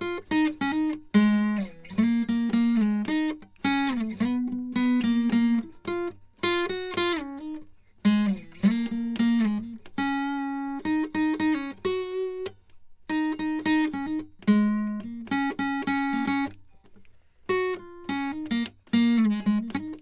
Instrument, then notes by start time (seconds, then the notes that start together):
acoustic guitar
0.02 F4
0.32 D#4
0.62 C#4
0.73 D#4
1.15 G#3
1.59 F#3
1.99 A#3
2.30 A#3
2.54 A#3
2.78 G#3
3.09 D#4
3.66 C#4
4.22 B3
4.49 B3
4.77 B3
5.06 A#3
5.34 A#3
5.65 E4
5.89 F4
6.44 F4
6.71 F#4
6.98 F4
7.13 C#4
7.40 D#4
8.06 G#3
8.28 F#3
8.65 A#3
8.93 A#3
9.21 A#3
9.41 G#3
9.65 A#3
9.99 C#4
10.86 D#4
11.16 D#4
11.41 D#4
11.54 C#4
11.86 F#4
13.11 D#4
13.40 D#4
13.67 D#4
13.95 C#4
14.07 D#4
14.48 G#3
15.01 A#3
15.32 C#4
15.60 C#4
15.88 C#4
16.14 A#3
16.30 C#4
17.50 F#4
17.75 F4
18.10 C#4
18.33 D#4
18.52 A#3
18.94 A#3
19.19 G#3
19.48 G#3
19.60 A#3
19.69 G#3
19.76 D#4